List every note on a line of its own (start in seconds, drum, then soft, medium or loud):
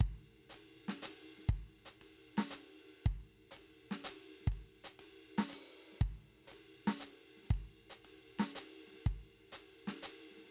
0.01 kick soft
0.01 ride medium
0.50 hi-hat pedal medium
0.55 ride medium
0.89 snare soft
0.89 ride soft
1.03 hi-hat pedal medium
1.03 ride soft
1.38 snare soft
1.43 snare soft
1.49 kick soft
1.49 ride medium
1.86 hi-hat pedal medium
2.02 ride soft
2.38 snare medium
2.38 ride soft
2.51 hi-hat pedal medium
2.55 ride soft
3.06 kick soft
3.06 ride soft
3.51 hi-hat pedal medium
3.57 ride soft
3.91 snare soft
3.91 ride soft
4.04 hi-hat pedal medium
4.09 ride soft
4.41 snare soft
4.48 kick soft
4.52 ride soft
4.84 hi-hat pedal medium
5.00 ride medium
5.38 snare medium
5.38 ride soft
5.49 hi-hat pedal medium
5.54 ride soft
5.93 snare soft
6.01 kick soft
6.01 ride soft
6.48 hi-hat pedal medium
6.52 ride medium
6.88 snare medium
6.88 ride soft
7.00 hi-hat pedal medium
7.04 ride soft
7.37 snare soft
7.41 snare soft
7.44 snare soft
7.50 kick soft
7.50 snare soft
7.50 ride medium
7.90 hi-hat pedal medium
8.05 ride soft
8.39 snare medium
8.39 ride medium
8.56 hi-hat pedal medium
8.56 ride soft
8.88 snare soft
8.94 snare soft
9.07 kick soft
9.07 ride medium
9.53 hi-hat pedal medium
9.57 ride soft
9.88 snare soft
9.88 ride medium
10.03 hi-hat pedal medium
10.03 ride soft
10.31 snare soft
10.38 snare soft
10.43 snare soft
10.45 snare soft